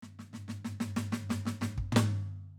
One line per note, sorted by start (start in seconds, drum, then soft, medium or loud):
0.03 snare soft
0.03 floor tom soft
0.19 snare soft
0.19 floor tom soft
0.34 snare soft
0.34 floor tom medium
0.49 snare medium
0.49 floor tom medium
0.65 snare medium
0.65 floor tom medium
0.81 snare medium
0.81 floor tom medium
0.97 snare medium
0.97 floor tom medium
1.13 snare medium
1.13 floor tom medium
1.30 snare medium
1.30 floor tom medium
1.46 snare medium
1.46 floor tom medium
1.62 snare medium
1.62 floor tom medium
1.78 kick medium
1.93 snare loud
1.93 floor tom loud